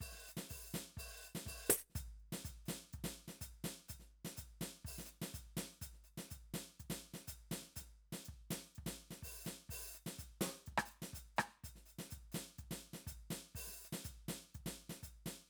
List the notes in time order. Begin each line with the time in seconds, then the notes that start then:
0.01 open hi-hat, kick
0.06 kick
0.13 snare
0.26 open hi-hat, hi-hat pedal
0.38 snare
0.49 open hi-hat, kick
0.75 snare, hi-hat pedal
0.98 open hi-hat, kick
1.02 kick
1.08 snare
1.23 hi-hat pedal, open hi-hat
1.36 snare
1.46 open hi-hat, kick, snare
1.52 kick
1.70 hi-hat pedal, high tom
1.91 snare
1.96 closed hi-hat, kick
2.20 closed hi-hat
2.33 snare
2.45 closed hi-hat, kick
2.66 snare, hi-hat pedal
2.93 kick, closed hi-hat
2.99 kick
3.05 snare
3.12 hi-hat pedal
3.29 snare
3.41 closed hi-hat, kick
3.47 kick
3.65 snare
3.89 closed hi-hat, kick
4.00 snare
4.25 snare
4.37 closed hi-hat, kick
4.62 snare
4.85 open hi-hat, kick
4.90 kick
4.99 snare
5.07 hi-hat pedal
5.12 closed hi-hat
5.22 snare
5.34 closed hi-hat, kick
5.58 snare
5.82 closed hi-hat, kick
5.94 snare
6.05 closed hi-hat, hi-hat pedal
6.18 snare
6.31 closed hi-hat, kick
6.55 snare
6.80 kick, closed hi-hat
6.91 snare
7.14 snare
7.28 closed hi-hat, kick
7.52 snare
7.62 snare
7.76 closed hi-hat, kick, snare
8.13 snare
8.26 kick, closed hi-hat
8.51 snare, hi-hat pedal
8.76 kick, closed hi-hat
8.87 snare
9.11 snare
9.23 open hi-hat, kick
9.45 snare, hi-hat pedal
9.70 open hi-hat, kick
9.75 snare
9.94 open hi-hat, hi-hat pedal
10.07 snare
10.19 closed hi-hat, kick
10.24 kick
10.42 snare, hi-hat pedal
10.47 snare
10.67 kick, closed hi-hat
10.73 kick
10.78 cross-stick
10.86 hi-hat pedal
10.91 closed hi-hat
11.03 snare
11.14 closed hi-hat, kick
11.19 kick
11.37 cross-stick, hi-hat pedal
11.64 closed hi-hat, kick
11.76 snare
11.86 closed hi-hat, hi-hat pedal
11.99 snare
12.11 closed hi-hat, kick
12.32 snare, hi-hat pedal
12.59 kick, closed hi-hat
12.64 kick
12.72 snare
12.79 hi-hat pedal
12.84 closed hi-hat
12.94 snare
13.07 closed hi-hat, kick
13.12 kick
13.31 snare
13.56 open hi-hat, kick
13.60 kick
13.68 snare
13.82 hi-hat pedal, open hi-hat
13.93 snare
14.05 closed hi-hat, kick
14.29 snare
14.55 kick, closed hi-hat
14.67 snare
14.80 closed hi-hat
14.90 snare
15.03 closed hi-hat, kick
15.27 snare